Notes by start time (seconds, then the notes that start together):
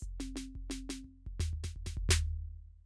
0.00 kick, hi-hat pedal
0.20 snare, high tom
0.36 snare, high tom
0.55 kick
0.70 snare, closed hi-hat, high tom
0.89 snare, high tom
1.04 kick
1.26 kick
1.39 snare, floor tom
1.53 kick
1.64 snare, floor tom
1.76 kick
1.86 snare, floor tom
1.97 kick
2.09 snare, floor tom